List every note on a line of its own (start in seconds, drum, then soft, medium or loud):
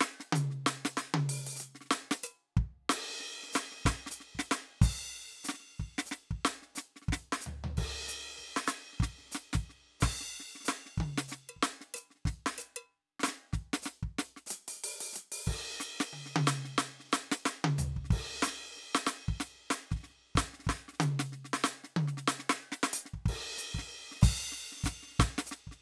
0.01 snare loud
0.20 snare medium
0.33 hi-hat pedal loud
0.33 high tom loud
0.51 snare soft
0.67 snare loud
0.85 snare loud
0.97 snare medium
0.97 hi-hat pedal medium
1.14 high tom loud
1.29 closed hi-hat loud
1.47 closed hi-hat loud
1.56 hi-hat pedal loud
1.60 closed hi-hat medium
1.75 snare soft
1.81 snare soft
1.85 snare soft
1.91 snare loud
2.11 snare loud
2.23 hi-hat pedal loud
2.23 percussion loud
2.57 kick medium
2.90 snare loud
2.90 hi-hat pedal loud
2.90 ride loud
3.10 snare soft
3.20 snare soft
3.43 snare soft
3.48 snare soft
3.51 snare soft
3.51 hi-hat pedal loud
3.53 snare soft
3.56 snare loud
3.72 snare soft
3.77 snare soft
3.81 snare soft
3.85 kick medium
3.85 snare soft
3.85 snare loud
3.91 snare soft
4.07 snare medium
4.11 hi-hat pedal loud
4.21 snare soft
4.35 kick soft
4.39 snare loud
4.51 snare loud
4.82 kick loud
4.82 snare soft
4.82 hi-hat pedal loud
4.82 crash loud
5.03 crash soft
5.44 snare soft
5.44 hi-hat pedal loud
5.49 snare loud
5.54 snare soft
5.60 snare soft
5.64 snare soft
5.67 snare soft
5.71 snare soft
5.80 kick medium
5.80 snare soft
5.98 snare loud
6.06 hi-hat pedal loud
6.12 snare medium
6.31 kick medium
6.45 snare loud
6.62 snare soft
6.75 snare medium
6.75 hi-hat pedal loud
6.96 snare soft
7.02 snare soft
7.06 kick medium
7.06 snare soft
7.10 snare soft
7.13 snare loud
7.33 snare loud
7.41 hi-hat pedal loud
7.47 floor tom medium
7.64 floor tom medium
7.78 kick medium
7.78 ride loud
8.08 hi-hat pedal loud
8.38 kick soft
8.38 snare soft
8.57 snare loud
8.67 snare loud
8.67 hi-hat pedal loud
8.93 snare soft
8.98 kick medium
8.98 snare soft
9.01 snare soft
9.03 snare medium
9.19 snare soft
9.23 snare soft
9.26 snare soft
9.29 snare soft
9.29 hi-hat pedal loud
9.35 snare medium
9.53 kick medium
9.53 snare loud
9.70 snare soft
10.01 kick medium
10.01 snare loud
10.01 hi-hat pedal loud
10.01 crash loud
10.21 snare soft
10.40 snare soft
10.55 snare soft
10.61 snare soft
10.64 snare soft
10.64 hi-hat pedal loud
10.67 snare soft
10.67 snare loud
10.86 snare soft
10.98 kick medium
10.98 high tom medium
11.18 snare loud
11.28 snare medium
11.28 hi-hat pedal loud
11.49 percussion medium
11.57 kick soft
11.63 snare loud
11.81 snare soft
11.94 hi-hat pedal loud
11.94 percussion loud
12.11 snare soft
12.15 snare soft
12.26 kick medium
12.26 snare medium
12.46 snare loud
12.58 hi-hat pedal loud
12.58 percussion loud
12.76 percussion loud
13.20 snare medium
13.24 snare loud
13.24 hi-hat pedal loud
13.28 snare medium
13.32 snare soft
13.37 snare soft
13.42 snare soft
13.46 snare soft
13.51 kick medium
13.51 cross-stick soft
13.51 snare medium
13.74 snare loud
13.83 snare medium
13.83 hi-hat pedal loud
14.03 kick medium
14.19 snare loud
14.37 snare soft
14.47 hi-hat pedal loud
14.51 closed hi-hat loud
14.68 closed hi-hat medium
14.84 closed hi-hat loud
15.01 closed hi-hat loud
15.13 closed hi-hat loud
15.13 hi-hat pedal loud
15.32 closed hi-hat loud
15.47 kick medium
15.47 ride loud
15.80 snare medium
15.80 hi-hat pedal loud
16.00 snare loud
16.13 high tom soft
16.26 snare soft
16.36 high tom loud
16.47 snare loud
16.47 hi-hat pedal loud
16.65 snare soft
16.78 snare loud
17.00 snare soft
17.05 snare soft
17.09 snare soft
17.12 snare soft
17.12 snare loud
17.12 hi-hat pedal loud
17.32 snare loud
17.46 snare loud
17.65 high tom loud
17.78 floor tom medium
17.78 hi-hat pedal loud
17.97 kick soft
18.05 snare soft
18.11 kick medium
18.11 ride loud
18.35 snare soft
18.38 snare soft
18.40 snare soft
18.43 snare loud
18.43 hi-hat pedal loud
18.47 snare medium
18.60 snare soft
18.63 snare soft
18.65 snare soft
18.68 snare soft
18.70 snare soft
18.77 snare soft
18.95 snare loud
19.06 snare loud
19.06 hi-hat pedal loud
19.28 kick medium
19.40 snare loud
19.71 snare loud
19.71 hi-hat pedal loud
19.91 kick medium
19.91 snare soft
19.96 snare soft
20.00 snare soft
20.03 snare soft
20.35 kick medium
20.35 snare loud
20.35 hi-hat pedal loud
20.54 snare soft
20.60 snare soft
20.64 kick medium
20.64 snare soft
20.68 snare soft
20.68 snare loud
20.88 snare soft
20.93 snare soft
20.99 snare soft
20.99 hi-hat pedal loud
20.99 high tom loud
21.19 snare loud
21.33 snare soft
21.45 snare soft
21.53 snare loud
21.64 snare loud
21.64 hi-hat pedal loud
21.84 snare soft
21.97 high tom loud
22.08 snare soft
22.17 snare medium
22.28 snare loud
22.28 hi-hat pedal loud
22.40 snare medium
22.50 snare loud
22.62 snare soft
22.72 snare medium
22.83 snare loud
22.93 closed hi-hat loud
22.93 hi-hat pedal loud
23.06 snare soft
23.14 kick soft
23.26 kick medium
23.26 ride loud
23.58 hi-hat pedal loud
23.75 kick medium
23.75 snare medium
24.12 snare soft
24.16 snare soft
24.22 kick loud
24.22 snare soft
24.22 hi-hat pedal loud
24.22 crash loud
24.26 snare soft
24.52 snare soft
24.72 snare soft
24.77 snare soft
24.80 snare soft
24.84 kick medium
24.84 snare soft
24.84 hi-hat pedal loud
24.86 snare loud
25.03 snare soft
25.08 snare soft
25.12 snare soft
25.16 snare soft
25.20 kick loud
25.20 snare loud
25.38 snare loud
25.46 hi-hat pedal loud
25.52 snare medium
25.67 kick soft
25.72 snare soft